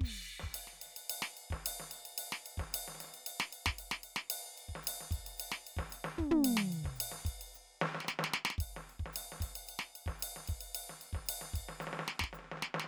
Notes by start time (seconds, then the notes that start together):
0.01 kick, crash
0.05 hi-hat pedal
0.40 kick, snare
0.54 hi-hat pedal, ride
0.67 snare
0.73 snare
0.81 ride
0.86 snare
0.96 ride
1.10 hi-hat pedal, ride bell
1.22 snare
1.37 ride
1.50 kick, snare
1.65 hi-hat pedal, ride bell
1.80 snare
1.91 ride
2.05 ride
2.18 hi-hat pedal, ride bell
2.32 snare
2.46 ride
2.57 kick, snare
2.73 hi-hat pedal, ride bell
2.88 snare
2.95 snare
3.00 snare, ride
3.04 snare
3.08 snare
3.14 ride
3.26 hi-hat pedal, ride bell
3.40 snare
3.53 ride
3.66 kick, snare
3.78 hi-hat pedal, ride
3.91 snare
4.03 ride
4.16 snare
4.30 hi-hat pedal, ride bell
4.58 ride
4.69 kick
4.75 snare
4.83 hi-hat pedal
4.87 ride bell
5.01 snare
5.11 kick, ride
5.17 kick
5.24 snare, ride
5.28 snare
5.37 hi-hat pedal, ride bell
5.52 snare
5.67 ride
5.77 kick, snare
5.89 hi-hat pedal, ride bell
6.04 snare
6.17 kick, floor tom
6.30 floor tom
6.44 hi-hat pedal, ride
6.57 snare
6.72 ride
6.84 kick, snare
6.95 hi-hat pedal
7.00 ride bell
7.12 snare
7.19 snare
7.25 kick, ride bell
7.41 ride bell
7.54 hi-hat pedal
7.81 snare
7.95 snare
8.00 snare
8.08 snare, hi-hat pedal
8.19 snare
8.24 snare
8.34 snare
8.45 snare
8.50 snare
8.58 kick, hi-hat pedal, ride bell
8.76 snare
8.89 ride
8.99 kick
9.06 snare
9.12 hi-hat pedal, ride bell
9.32 snare
9.38 kick, snare
9.42 snare, ride
9.45 snare
9.51 snare
9.55 ride
9.67 hi-hat pedal, ride bell
9.79 snare
9.95 ride
10.06 kick, snare
10.19 hi-hat pedal, ride
10.36 snare
10.45 kick, snare, ride
10.61 ride
10.74 hi-hat pedal, ride bell
10.89 snare
11.01 ride
11.13 kick, snare
11.20 kick
11.26 hi-hat pedal, ride bell
11.41 snare
11.54 kick, ride
11.59 kick
11.69 snare
11.80 snare, hi-hat pedal
11.87 snare
11.93 snare
11.99 snare
12.08 snare
12.19 kick, snare
12.24 snare
12.33 snare, hi-hat pedal
12.39 snare
12.44 snare
12.52 snare
12.57 snare
12.62 snare
12.74 snare
12.80 snare